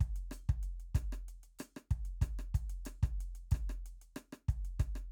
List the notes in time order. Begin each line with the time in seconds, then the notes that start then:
0.01 kick, closed hi-hat
0.16 closed hi-hat
0.32 closed hi-hat, cross-stick
0.49 kick, cross-stick
0.63 closed hi-hat
0.80 closed hi-hat
0.95 kick, cross-stick, closed hi-hat
1.13 cross-stick
1.29 closed hi-hat
1.44 closed hi-hat
1.59 closed hi-hat, cross-stick
1.77 cross-stick
1.91 kick, closed hi-hat
2.06 closed hi-hat
2.22 kick, cross-stick, closed hi-hat
2.39 cross-stick
2.55 kick, closed hi-hat
2.70 closed hi-hat
2.86 cross-stick, closed hi-hat
3.03 kick, cross-stick
3.21 closed hi-hat
3.36 closed hi-hat
3.52 kick, cross-stick, closed hi-hat
3.70 cross-stick
3.86 closed hi-hat
4.02 closed hi-hat
4.16 cross-stick, closed hi-hat
4.33 cross-stick
4.49 kick, closed hi-hat
4.65 closed hi-hat
4.80 kick, cross-stick, closed hi-hat
4.96 cross-stick